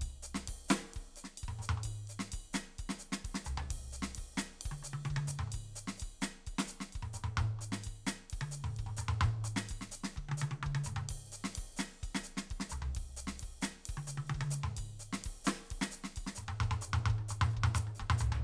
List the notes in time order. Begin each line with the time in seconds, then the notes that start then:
0.01 kick, ride bell
0.07 kick
0.09 kick
0.22 hi-hat pedal, ride
0.34 snare
0.47 kick, ride
0.68 snare, hi-hat pedal
0.93 kick, ride
1.16 hi-hat pedal, ride
1.24 snare
1.37 ride bell
1.43 kick
1.48 mid tom
1.59 hi-hat pedal, mid tom
1.69 mid tom
1.77 mid tom
1.83 kick, ride bell
2.07 hi-hat pedal, ride
2.19 snare
2.32 kick, ride bell
2.53 snare, hi-hat pedal
2.73 hi-hat pedal
2.78 kick, ride bell
2.89 snare
2.99 hi-hat pedal, ride
3.12 snare
3.24 kick, ride
3.34 snare
3.44 floor tom, hi-hat pedal
3.57 floor tom
3.70 kick, ride
3.76 kick
3.91 hi-hat pedal, ride
4.02 snare
4.12 hi-hat pedal, ride
4.17 kick
4.37 snare, hi-hat pedal
4.59 hi-hat pedal, ride
4.65 kick
4.71 kick, high tom
4.73 kick
4.82 hi-hat pedal, high tom
4.93 high tom
5.04 hi-hat pedal, high tom
5.10 kick
5.16 high tom
5.27 hi-hat pedal, mid tom
5.39 mid tom
5.47 mid tom
5.52 kick, ride bell
5.75 hi-hat pedal, ride
5.87 snare
5.97 hi-hat pedal, ride bell
6.02 kick
6.21 snare, hi-hat pedal
6.47 kick, ride bell
6.58 snare
6.67 hi-hat pedal, ride
6.80 snare
6.92 kick, ride bell
7.02 mid tom
7.13 hi-hat pedal, mid tom
7.24 mid tom
7.37 kick, mid tom
7.46 kick
7.59 hi-hat pedal, mid tom
7.72 snare
7.82 hi-hat pedal, ride bell
7.86 kick
8.06 snare, hi-hat pedal
8.30 kick, ride
8.41 kick, high tom
8.51 hi-hat pedal, ride
8.64 mid tom
8.72 hi-hat pedal
8.76 kick, ride
8.86 mid tom
8.97 hi-hat pedal, mid tom
9.08 mid tom
9.21 kick, mid tom
9.44 hi-hat pedal, mid tom
9.56 snare
9.66 hi-hat pedal, ride bell
9.70 kick
9.81 snare
9.91 hi-hat pedal, ride bell
10.03 snare
10.12 hi-hat pedal, high tom
10.17 kick
10.24 kick
10.28 high tom
10.31 high tom
10.37 hi-hat pedal
10.41 high tom
10.51 high tom
10.63 kick, high tom
10.72 kick, high tom
10.84 hi-hat pedal, mid tom
10.96 mid tom
11.09 kick, ride
11.32 hi-hat pedal, ride
11.44 snare
11.53 hi-hat pedal, ride
11.57 kick
11.76 snare, hi-hat pedal
12.03 kick, ride bell
12.15 snare
12.23 hi-hat pedal, ride
12.37 snare
12.50 kick, ride
12.60 snare
12.69 floor tom, hi-hat pedal
12.82 floor tom
12.95 kick, ride
13.04 kick
13.16 hi-hat pedal, ride
13.27 snare
13.37 hi-hat pedal, ride
13.42 kick
13.61 snare, hi-hat pedal
13.82 hi-hat pedal, ride
13.89 kick
13.97 kick, high tom
14.07 hi-hat pedal, high tom
14.17 high tom
14.27 hi-hat pedal, high tom, crash
14.34 kick
14.41 high tom
14.50 hi-hat pedal, high tom
14.63 mid tom
14.77 kick, ride bell
14.99 hi-hat pedal, ride
15.12 snare
15.20 hi-hat pedal
15.24 kick, ride
15.44 snare, hi-hat pedal
15.64 hi-hat pedal
15.70 kick, ride
15.81 snare
15.91 hi-hat pedal, ride
16.04 snare
16.10 hi-hat pedal
16.16 kick, ride bell
16.26 snare
16.35 hi-hat pedal, mid tom
16.48 mid tom
16.60 kick, mid tom
16.71 mid tom
16.81 hi-hat pedal, mid tom
16.93 mid tom
17.05 mid tom
17.10 kick
17.18 mid tom
17.28 hi-hat pedal, mid tom
17.41 mid tom
17.49 hi-hat pedal
17.53 kick, mid tom
17.63 mid tom
17.74 hi-hat pedal, mid tom
17.87 mid tom
17.95 hi-hat pedal
17.99 kick, mid tom
18.10 mid tom
18.18 floor tom, hi-hat pedal
18.32 floor tom